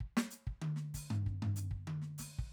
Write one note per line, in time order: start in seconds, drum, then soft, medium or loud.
0.00 kick soft
0.17 snare medium
0.31 snare soft
0.31 hi-hat pedal medium
0.47 kick soft
0.62 high tom loud
0.76 snare soft
0.94 kick soft
0.94 snare soft
0.94 hi-hat pedal medium
1.10 floor tom loud
1.26 kick soft
1.26 snare soft
1.42 floor tom loud
1.56 snare soft
1.56 hi-hat pedal medium
1.71 kick soft
1.87 high tom medium
2.02 snare soft
2.18 kick soft
2.18 snare soft
2.18 hi-hat pedal medium
2.39 kick soft